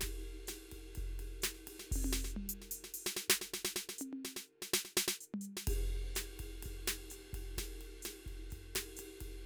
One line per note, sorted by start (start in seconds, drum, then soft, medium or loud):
0.01 kick soft
0.01 snare medium
0.01 hi-hat pedal soft
0.01 ride medium
0.08 kick soft
0.20 snare soft
0.48 snare medium
0.48 hi-hat pedal medium
0.48 ride medium
0.72 kick soft
0.72 ride soft
0.95 kick soft
0.95 hi-hat pedal soft
0.95 ride medium
1.19 ride medium
1.42 snare medium
1.42 hi-hat pedal medium
1.42 ride medium
1.55 snare soft
1.67 ride medium
1.80 snare soft
1.92 kick soft
1.92 hi-hat pedal loud
1.96 kick soft
1.96 high tom medium
2.01 kick soft
2.05 high tom medium
2.13 snare medium
2.25 snare soft
2.37 mid tom medium
2.49 closed hi-hat loud
2.62 snare soft
2.71 open hi-hat loud
2.71 hi-hat pedal soft
2.84 snare soft
2.94 open hi-hat loud
3.02 hi-hat pedal soft
3.06 snare medium
3.17 snare medium
3.28 kick soft
3.28 snare loud
3.28 hi-hat pedal medium
3.42 snare medium
3.54 snare medium
3.65 snare medium
3.76 snare medium
3.89 snare medium
3.99 hi-hat pedal loud
3.99 high tom medium
4.13 high tom medium
4.25 snare medium
4.37 snare medium
4.45 hi-hat pedal soft
4.62 snare medium
4.74 snare loud
4.85 snare soft
4.97 snare loud
4.97 hi-hat pedal loud
5.08 snare loud
5.21 hi-hat pedal medium
5.34 mid tom medium
5.41 hi-hat pedal medium
5.57 snare medium
5.67 kick medium
5.67 hi-hat pedal medium
5.67 ride loud
5.79 kick soft
6.16 snare medium
6.16 hi-hat pedal loud
6.16 ride medium
6.39 kick soft
6.39 ride medium
6.45 kick soft
6.45 snare soft
6.63 kick soft
6.63 hi-hat pedal soft
6.63 ride medium
6.72 kick soft
6.88 snare medium
6.88 ride medium
7.10 hi-hat pedal medium
7.10 ride medium
7.21 snare soft
7.33 kick soft
7.33 ride medium
7.39 kick soft
7.58 kick soft
7.58 snare medium
7.58 hi-hat pedal soft
7.58 ride medium
7.63 kick soft
7.81 ride soft
8.03 snare medium
8.03 hi-hat pedal medium
8.03 ride medium
8.25 kick soft
8.25 snare soft
8.25 ride soft
8.32 kick soft
8.37 snare soft
8.51 kick soft
8.51 hi-hat pedal soft
8.51 ride soft
8.58 kick soft
8.75 snare medium
8.75 ride medium
8.97 hi-hat pedal medium
8.97 ride medium
9.21 kick soft
9.21 ride medium
9.27 kick soft
9.27 snare soft